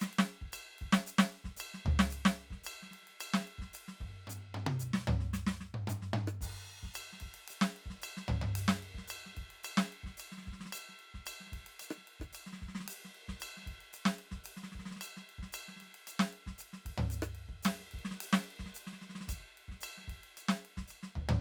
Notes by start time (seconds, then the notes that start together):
0.01 snare, hi-hat pedal
0.14 ride
0.19 snare
0.42 kick
0.53 hi-hat pedal, ride bell
0.79 kick, ride
0.93 snare
1.07 hi-hat pedal, ride
1.19 snare
1.33 ride
1.45 kick, snare
1.57 hi-hat pedal, ride bell
1.74 snare
1.86 kick, floor tom
1.91 kick
2.00 snare
2.11 hi-hat pedal, ride
2.26 snare
2.51 kick, snare
2.64 hi-hat pedal, ride bell
2.83 snare
2.91 snare, ride
3.03 snare
3.08 snare, ride
3.21 hi-hat pedal, ride bell
3.34 snare
3.41 snare
3.48 ride
3.59 kick, snare
3.65 kick
3.74 hi-hat pedal, ride
3.89 snare
4.01 kick, mid tom
4.28 hi-hat pedal, mid tom
4.55 mid tom
4.67 high tom
4.80 floor tom, hi-hat pedal
4.94 snare
5.08 floor tom
5.21 snare
5.34 snare, hi-hat pedal
5.47 snare
5.61 snare
5.75 mid tom
5.88 hi-hat pedal, mid tom
6.02 snare
6.14 mid tom
6.28 cross-stick
6.41 kick, hi-hat pedal, crash
6.53 kick
6.83 kick, snare
6.89 kick
6.95 hi-hat pedal, ride bell
7.13 snare
7.21 kick, snare, ride
7.35 ride
7.48 hi-hat pedal, ride
7.62 snare
7.77 ride
7.86 kick
7.91 snare
8.02 hi-hat pedal, ride bell
8.18 snare
8.29 kick, floor tom
8.42 floor tom
8.56 hi-hat pedal, ride
8.69 snare
8.83 ride
8.95 kick, snare
9.08 hi-hat pedal, ride bell
9.26 snare
9.35 kick, cross-stick, ride
9.41 snare
9.51 ride
9.64 hi-hat pedal, ride bell
9.78 snare
9.93 ride
10.04 kick, snare
10.18 hi-hat pedal, ride bell
10.32 snare
10.38 snare
10.43 snare
10.46 kick, snare
10.53 kick, snare
10.59 snare
10.61 snare
10.66 snare
10.73 hi-hat pedal, ride bell
10.89 snare
11.00 ride
11.15 kick, snare
11.26 hi-hat pedal, ride bell
11.41 snare
11.47 snare
11.52 kick, snare, ride
11.59 snare
11.62 snare
11.67 ride
11.80 hi-hat pedal, ride bell
11.91 cross-stick
11.98 snare
12.08 ride
12.20 kick, cross-stick
12.26 kick
12.33 hi-hat pedal, ride bell
12.47 snare
12.53 snare
12.59 snare
12.61 kick, snare
12.69 snare
12.75 snare
12.81 snare
12.86 snare, ride
12.90 hi-hat pedal
13.05 snare
13.15 ride
13.29 kick, snare
13.40 hi-hat pedal, ride bell
13.57 snare
13.63 kick, snare
13.67 snare, ride
13.74 snare
13.81 ride
13.94 hi-hat pedal, ride
14.06 snare
14.19 ride
14.32 kick, snare
14.44 hi-hat pedal, ride
14.57 snare
14.64 snare
14.72 kick, snare
14.80 snare
14.86 snare
14.92 snare
14.97 snare
15.02 hi-hat pedal, ride bell
15.17 snare
15.30 ride
15.39 kick
15.43 snare
15.53 hi-hat pedal, ride bell
15.69 snare
15.77 snare, ride
15.82 snare
15.87 snare
15.95 ride
16.08 hi-hat pedal, ride bell
16.20 snare
16.33 ride
16.47 kick, snare
16.59 hi-hat pedal, ride
16.74 snare
16.86 kick, ride
16.98 floor tom
17.11 hi-hat pedal, ride
17.23 cross-stick
17.35 ride
17.49 kick
17.63 snare, hi-hat pedal, ride
17.81 snare
17.92 kick, ride
17.99 ride
18.05 snare
18.11 snare
18.21 hi-hat pedal, ride
18.33 snare
18.45 ride
18.51 ride
18.57 kick, snare, ride
18.66 snare
18.75 hi-hat pedal, ride
18.87 snare
18.93 snare
19.02 snare
19.10 snare
19.16 snare
19.21 snare
19.28 kick, snare, hi-hat pedal, ride bell
19.58 ride
19.69 kick, snare
19.81 hi-hat pedal, ride bell
19.98 snare
20.04 kick, snare
20.08 snare, ride
20.14 kick, snare
20.24 ride
20.37 hi-hat pedal, ride bell
20.49 snare
20.66 ride
20.78 kick, snare
20.88 hi-hat pedal, ride bell
21.03 snare
21.16 kick, floor tom
21.23 kick
21.29 floor tom